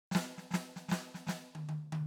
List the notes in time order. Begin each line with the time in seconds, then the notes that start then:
0.12 snare
0.15 snare
0.38 snare
0.51 snare
0.54 snare
0.76 snare
0.89 snare
0.92 snare
1.15 snare
1.27 snare
1.29 snare
1.55 high tom
1.69 high tom
1.92 high tom